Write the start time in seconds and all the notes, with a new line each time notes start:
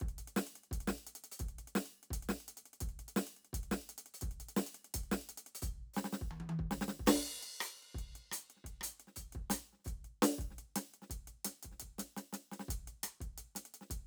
0.01 kick, closed hi-hat
0.09 closed hi-hat
0.19 closed hi-hat
0.28 closed hi-hat
0.37 snare
0.47 closed hi-hat
0.56 closed hi-hat
0.64 closed hi-hat
0.72 kick, closed hi-hat
0.81 closed hi-hat
0.88 snare
0.99 closed hi-hat
1.07 closed hi-hat
1.16 closed hi-hat
1.25 closed hi-hat
1.32 closed hi-hat
1.40 kick, closed hi-hat
1.49 closed hi-hat
1.59 closed hi-hat
1.68 closed hi-hat
1.76 snare
1.87 closed hi-hat
1.97 closed hi-hat
2.04 closed hi-hat
2.11 kick, closed hi-hat
2.23 closed hi-hat
2.30 snare
2.41 closed hi-hat
2.49 closed hi-hat
2.58 closed hi-hat
2.66 closed hi-hat
2.74 closed hi-hat
2.81 kick, closed hi-hat
2.90 closed hi-hat
3.00 closed hi-hat
3.09 closed hi-hat
3.17 snare
3.28 closed hi-hat
3.37 closed hi-hat
3.46 closed hi-hat
3.54 kick, closed hi-hat
3.64 closed hi-hat
3.72 snare
3.82 closed hi-hat
3.90 closed hi-hat
3.99 closed hi-hat
4.07 closed hi-hat
4.15 closed hi-hat
4.22 kick, closed hi-hat
4.32 closed hi-hat
4.41 closed hi-hat
4.49 closed hi-hat
4.57 snare
4.67 closed hi-hat
4.75 closed hi-hat
4.85 closed hi-hat
4.95 kick, closed hi-hat
5.04 closed hi-hat
5.12 snare
5.22 closed hi-hat
5.30 closed hi-hat
5.38 closed hi-hat
5.47 closed hi-hat
5.56 closed hi-hat
5.63 open hi-hat, kick
5.94 snare, hi-hat pedal
6.05 snare
6.13 snare
6.22 kick
6.32 high tom
6.41 high tom
6.50 high tom
6.60 kick
6.72 snare
6.82 snare
6.89 snare
7.00 kick
7.07 snare, crash
7.12 cross-stick
7.43 closed hi-hat
7.61 open hi-hat, cross-stick
7.77 hi-hat pedal
7.83 closed hi-hat
7.95 kick, closed hi-hat
8.16 closed hi-hat
8.32 closed hi-hat, cross-stick
8.51 closed hi-hat
8.57 snare
8.65 kick, closed hi-hat
8.82 closed hi-hat, cross-stick
9.01 closed hi-hat
9.08 snare
9.17 closed hi-hat, kick
9.33 kick, closed hi-hat
9.51 open hi-hat, cross-stick, snare
9.74 snare
9.80 snare
9.85 kick, closed hi-hat, hi-hat pedal
10.05 closed hi-hat
10.23 closed hi-hat, snare
10.39 kick, closed hi-hat
10.51 snare
10.59 closed hi-hat
10.77 snare, closed hi-hat
10.94 closed hi-hat
11.03 snare
11.11 kick, closed hi-hat
11.28 closed hi-hat
11.45 snare, closed hi-hat
11.63 kick, closed hi-hat
11.72 snare
11.81 kick, closed hi-hat
11.99 snare, closed hi-hat
12.17 snare, closed hi-hat
12.33 snare, closed hi-hat
12.52 snare, closed hi-hat
12.60 snare
12.69 kick, closed hi-hat
12.88 closed hi-hat
13.04 cross-stick, closed hi-hat
13.21 kick, closed hi-hat
13.39 closed hi-hat
13.56 snare, closed hi-hat
13.66 closed hi-hat
13.75 closed hi-hat
13.82 snare
13.91 kick, closed hi-hat